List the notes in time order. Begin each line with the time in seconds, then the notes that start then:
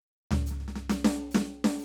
0.31 snare, floor tom
0.46 hi-hat pedal
0.51 snare
0.55 snare
0.60 snare
0.68 snare
0.76 snare
0.90 snare, hi-hat pedal
1.05 snare
1.31 snare, hi-hat pedal
1.64 snare
1.79 hi-hat pedal